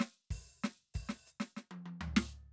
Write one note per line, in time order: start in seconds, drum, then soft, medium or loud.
0.00 snare medium
0.31 open hi-hat medium
0.31 kick soft
0.64 snare medium
0.94 open hi-hat medium
0.94 kick soft
1.09 snare medium
1.27 hi-hat pedal medium
1.40 snare medium
1.57 snare soft
1.71 high tom medium
1.86 high tom soft
2.01 floor tom medium
2.17 snare loud